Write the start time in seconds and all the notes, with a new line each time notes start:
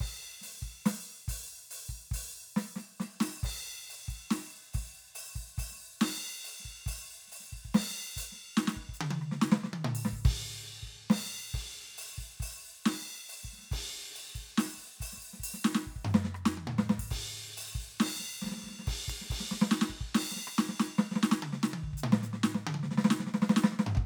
0.01 kick, crash
0.22 open hi-hat
0.42 open hi-hat, snare
0.49 snare
0.54 snare
0.58 snare
0.60 kick, snare
0.65 open hi-hat
0.87 open hi-hat, snare
1.06 open hi-hat
1.29 open hi-hat, kick
1.49 open hi-hat
1.72 open hi-hat
1.90 kick, open hi-hat
2.12 open hi-hat, kick
2.36 open hi-hat
2.57 open hi-hat, snare
2.77 open hi-hat, snare
3.01 open hi-hat, snare
3.21 open hi-hat, snare
3.44 kick, crash
3.90 open hi-hat
4.09 kick, open hi-hat
4.32 open hi-hat, snare
4.51 open hi-hat
4.74 open hi-hat, kick, snare
4.96 open hi-hat
5.16 open hi-hat
5.36 kick, open hi-hat
5.59 open hi-hat, kick
5.72 snare
5.76 snare
5.81 open hi-hat
6.02 snare, crash
6.22 open hi-hat
6.45 open hi-hat
6.61 snare
6.66 kick, open hi-hat
6.87 open hi-hat, kick
7.10 open hi-hat
7.28 snare
7.33 open hi-hat
7.41 snare
7.53 kick
7.66 kick
7.70 kick
7.75 snare, crash
8.18 open hi-hat, kick
8.23 hi-hat pedal
8.33 snare
8.58 snare
8.68 snare
8.77 kick
8.90 kick
8.95 hi-hat pedal
9.02 high tom
9.12 high tom
9.22 cross-stick
9.33 snare
9.43 snare
9.53 snare
9.64 snare
9.74 high tom
9.85 mid tom
9.96 open hi-hat
10.06 snare
10.13 kick
10.26 kick, ride
10.84 kick
11.11 snare, crash
11.55 kick, ride
11.99 open hi-hat
12.19 kick, open hi-hat
12.41 open hi-hat, kick
12.63 open hi-hat
12.87 snare, crash
13.09 open hi-hat
13.30 open hi-hat
13.44 kick, snare
13.54 snare
13.59 snare
13.63 snare
13.70 kick, snare, ride
14.16 open hi-hat
14.36 kick, open hi-hat
14.59 open hi-hat, snare
14.78 kick, open hi-hat
14.98 kick, snare
15.03 open hi-hat
15.13 snare
15.18 kick
15.23 open hi-hat
15.34 snare
15.41 kick, open hi-hat
15.54 snare
15.65 snare
15.88 kick
15.97 kick
16.06 floor tom
16.11 hi-hat pedal
16.15 snare
16.35 cross-stick
16.46 snare
16.58 high tom
16.68 mid tom
16.79 snare
16.90 snare
17.00 kick, open hi-hat
17.12 kick, ride
17.58 open hi-hat
17.76 kick
18.01 snare, crash
18.20 snare
18.43 kick, snare
18.47 snare
18.52 snare
18.58 snare
18.63 kick, snare
18.67 snare
18.71 snare
18.74 snare
18.80 snare
18.84 kick, snare, ride
19.09 kick, ride bell
19.22 snare
19.31 kick, ride
19.41 snare
19.52 kick, snare
19.62 snare
19.72 snare
19.90 kick
20.02 kick
20.16 snare, crash
20.32 snare
20.37 snare
20.48 cross-stick
20.59 snare
20.69 snare
20.81 snare, hi-hat pedal
20.99 snare
21.12 snare
21.17 snare
21.24 snare
21.31 snare, hi-hat pedal
21.43 high tom
21.54 snare
21.64 snare, hi-hat pedal
21.74 high tom
21.84 kick
21.94 kick, hi-hat pedal
22.04 mid tom
22.13 snare
22.24 hi-hat pedal
22.34 snare
22.44 snare
22.56 snare
22.68 high tom
22.75 high tom
22.84 snare
22.92 snare
22.99 snare
23.05 snare
23.11 snare
23.21 snare
23.28 snare
23.35 snare
23.43 snare
23.50 snare
23.57 snare
23.65 snare
23.73 snare
23.80 snare
23.87 floor tom
23.96 kick, floor tom